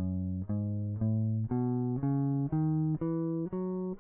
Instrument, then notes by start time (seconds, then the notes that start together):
electric guitar
0.00 F#2
0.52 G#2
1.04 A2
1.53 B2
2.05 C#3
2.54 D#3
3.03 E3
3.54 F#3